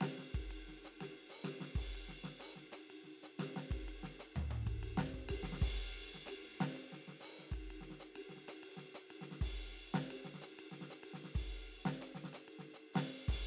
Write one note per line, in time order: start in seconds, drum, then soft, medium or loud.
0.01 snare medium
0.01 ride loud
0.09 hi-hat pedal soft
0.18 snare soft
0.34 kick soft
0.34 ride medium
0.51 ride medium
0.68 snare soft
0.85 hi-hat pedal medium
1.01 snare soft
1.01 ride medium
1.30 hi-hat pedal medium
1.44 snare soft
1.44 ride loud
1.60 snare soft
1.75 kick soft
1.75 ride medium
1.95 ride medium
2.09 snare soft
2.24 snare soft
2.40 hi-hat pedal loud
2.40 ride medium
2.56 snare soft
2.72 hi-hat pedal loud
2.72 ride medium
2.90 ride medium
3.04 snare soft
3.23 hi-hat pedal medium
3.39 snare soft
3.39 ride loud
3.56 snare soft
3.71 kick soft
3.71 ride medium
3.88 ride medium
4.03 snare soft
4.20 hi-hat pedal loud
4.36 floor tom medium
4.51 high tom medium
4.67 kick soft
4.67 ride medium
4.83 ride medium
4.98 snare medium
5.14 kick soft
5.29 kick soft
5.29 ride loud
5.43 snare soft
5.52 snare soft
5.62 kick medium
5.62 ride medium
6.14 snare soft
6.26 hi-hat pedal loud
6.26 ride loud
6.61 snare medium
6.61 ride medium
6.74 hi-hat pedal soft
6.74 ride medium
6.92 snare soft
7.08 snare soft
7.21 hi-hat pedal medium
7.25 ride medium
7.39 snare soft
7.52 kick soft
7.52 ride medium
7.71 ride medium
7.81 snare soft
7.90 snare soft
8.00 hi-hat pedal medium
8.16 ride medium
8.29 snare soft
8.36 snare soft
8.48 hi-hat pedal loud
8.48 ride medium
8.63 ride medium
8.69 hi-hat pedal soft
8.77 snare soft
8.95 hi-hat pedal loud
9.11 ride medium
9.15 hi-hat pedal soft
9.21 snare soft
9.31 snare soft
9.41 kick medium
9.41 ride medium
9.58 ride soft
9.94 snare medium
10.11 ride medium
10.25 snare soft
10.34 snare soft
10.42 hi-hat pedal loud
10.42 ride medium
10.59 ride medium
10.72 snare soft
10.81 snare soft
10.90 hi-hat pedal loud
11.04 ride medium
11.14 snare soft
11.24 snare soft
11.34 kick medium
11.34 ride medium
11.49 ride soft
11.86 snare medium
12.01 hi-hat pedal loud
12.01 ride medium
12.15 snare soft
12.24 snare soft
12.33 hi-hat pedal loud
12.33 ride medium
12.48 ride medium
12.59 snare soft
12.74 hi-hat pedal medium
12.94 snare medium
12.94 ride medium
13.28 kick medium
13.28 ride medium